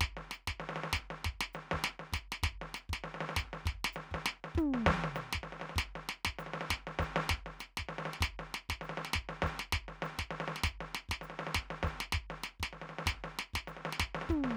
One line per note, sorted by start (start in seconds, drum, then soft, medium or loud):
0.01 kick soft
0.01 snare loud
0.07 kick soft
0.17 snare soft
0.31 snare medium
0.31 hi-hat pedal soft
0.48 kick soft
0.48 snare loud
0.60 snare soft
0.69 snare medium
0.76 snare medium
0.84 snare medium
0.93 kick soft
0.93 snare loud
0.93 hi-hat pedal soft
1.11 snare soft
1.25 kick soft
1.25 snare medium
1.34 kick soft
1.41 snare loud
1.53 snare soft
1.53 hi-hat pedal soft
1.72 kick soft
1.72 snare medium
1.84 snare loud
2.00 snare soft
2.13 kick soft
2.13 snare loud
2.13 hi-hat pedal soft
2.32 snare medium
2.43 kick soft
2.43 snare loud
2.49 kick soft
2.53 kick soft
2.62 snare soft
2.75 snare medium
2.75 hi-hat pedal soft
2.90 kick soft
2.90 snare medium
3.04 snare soft
3.15 snare soft
3.21 snare medium
3.29 snare medium
3.37 kick soft
3.37 snare loud
3.37 hi-hat pedal soft
3.42 kick soft
3.53 snare soft
3.66 kick soft
3.66 snare medium
3.73 kick soft
3.75 kick soft
3.85 snare loud
3.93 snare soft
3.93 hi-hat pedal medium
4.12 kick soft
4.12 snare medium
4.26 snare loud
4.44 snare soft
4.55 kick soft
4.55 floor tom loud
4.55 hi-hat pedal soft
4.74 snare medium
4.87 kick soft
4.87 snare loud
4.93 kick soft
5.04 snare medium
5.16 snare medium
5.16 hi-hat pedal medium
5.33 kick soft
5.33 snare loud
5.44 snare soft
5.53 snare soft
5.60 snare soft
5.62 snare soft
5.70 snare soft
5.76 kick soft
5.76 snare loud
5.76 hi-hat pedal medium
5.96 snare soft
6.09 snare medium
6.25 kick soft
6.25 snare loud
6.39 snare soft
6.39 hi-hat pedal medium
6.47 snare soft
6.54 snare medium
6.61 snare medium
6.70 kick soft
6.70 snare loud
6.87 snare soft
6.99 kick soft
6.99 snare medium
6.99 hi-hat pedal soft
7.16 snare medium
7.30 kick soft
7.30 snare loud
7.37 kick soft
7.46 snare soft
7.60 snare medium
7.60 hi-hat pedal medium
7.78 kick soft
7.78 snare medium
7.89 snare soft
7.99 snare medium
8.06 snare medium
8.14 snare soft
8.21 kick soft
8.21 snare loud
8.21 hi-hat pedal soft
8.27 kick soft
8.40 snare soft
8.55 snare medium
8.70 kick soft
8.70 snare loud
8.82 snare soft
8.82 hi-hat pedal soft
8.90 snare soft
8.98 snare medium
9.05 snare medium
9.14 kick soft
9.14 snare loud
9.29 snare medium
9.42 kick soft
9.42 snare medium
9.42 hi-hat pedal soft
9.60 snare medium
9.73 kick soft
9.73 snare loud
9.89 snare soft
10.03 snare medium
10.03 hi-hat pedal soft
10.19 kick soft
10.19 snare medium
10.31 snare medium
10.40 snare medium
10.48 snare medium
10.56 snare medium
10.64 kick soft
10.64 snare loud
10.64 hi-hat pedal soft
10.70 kick soft
10.81 snare soft
10.95 snare medium
11.09 kick soft
11.09 snare loud
11.22 snare soft
11.22 hi-hat pedal medium
11.30 snare soft
11.39 snare soft
11.39 snare medium
11.47 snare medium
11.55 kick soft
11.55 snare loud
11.71 snare medium
11.83 kick soft
11.83 snare medium
11.83 hi-hat pedal soft
11.92 kick soft
12.01 snare medium
12.13 kick soft
12.13 snare loud
12.30 snare soft
12.43 snare medium
12.43 hi-hat pedal soft
12.60 kick soft
12.60 snare loud
12.73 snare soft
12.82 snare soft
12.90 snare soft
12.99 snare medium
13.07 kick soft
13.07 snare loud
13.07 hi-hat pedal medium
13.12 kick soft
13.24 snare soft
13.39 snare medium
13.54 kick soft
13.54 snare loud
13.68 snare soft
13.68 hi-hat pedal soft
13.77 snare soft
13.85 snare medium
13.93 snare medium
14.00 kick soft
14.00 snare loud
14.15 snare medium
14.22 snare soft
14.30 kick soft
14.30 floor tom loud
14.30 hi-hat pedal soft
14.38 kick soft
14.44 snare medium
14.51 snare soft